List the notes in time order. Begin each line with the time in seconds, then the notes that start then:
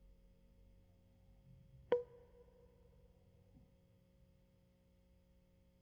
1.93 B4